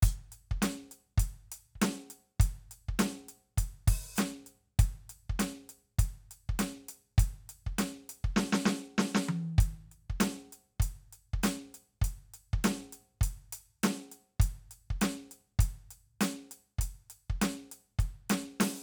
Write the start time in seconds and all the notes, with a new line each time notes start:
0.02 closed hi-hat, kick
0.32 closed hi-hat
0.51 kick
0.62 snare, closed hi-hat
0.91 closed hi-hat
1.18 kick, closed hi-hat
1.52 closed hi-hat
1.75 kick
1.82 snare, closed hi-hat
2.10 closed hi-hat
2.40 kick, closed hi-hat
2.71 closed hi-hat
2.89 kick
2.99 snare, closed hi-hat
3.29 closed hi-hat
3.58 kick, closed hi-hat
3.88 kick, open hi-hat
4.16 snare, closed hi-hat, hi-hat pedal
4.46 closed hi-hat
4.79 kick, closed hi-hat
5.09 closed hi-hat
5.29 kick
5.39 snare, closed hi-hat
5.69 closed hi-hat
5.99 kick, closed hi-hat
6.31 closed hi-hat
6.49 kick
6.59 snare, closed hi-hat
6.88 closed hi-hat
7.18 kick, closed hi-hat
7.49 closed hi-hat
7.66 kick
7.78 snare, closed hi-hat
8.09 closed hi-hat
8.24 kick
8.36 snare
8.53 snare
8.65 snare
8.98 snare
9.15 snare
9.29 high tom
9.58 kick, closed hi-hat
9.92 closed hi-hat
10.10 kick
10.20 snare, closed hi-hat
10.52 closed hi-hat
10.80 kick, closed hi-hat
11.13 closed hi-hat
11.33 kick
11.43 closed hi-hat, snare
11.74 closed hi-hat
12.02 kick, closed hi-hat
12.34 closed hi-hat
12.53 kick
12.64 snare, closed hi-hat
12.93 closed hi-hat
13.21 kick, closed hi-hat
13.53 closed hi-hat
13.83 snare, closed hi-hat
14.12 closed hi-hat
14.40 kick, closed hi-hat
14.71 closed hi-hat
14.90 kick
15.01 snare, closed hi-hat
15.31 closed hi-hat
15.59 kick, closed hi-hat
15.91 closed hi-hat
16.21 closed hi-hat, snare
16.51 closed hi-hat
16.79 kick, closed hi-hat
17.10 closed hi-hat
17.30 kick
17.41 snare, closed hi-hat
17.71 closed hi-hat
17.99 kick, closed hi-hat
18.30 snare, closed hi-hat
18.60 snare, open hi-hat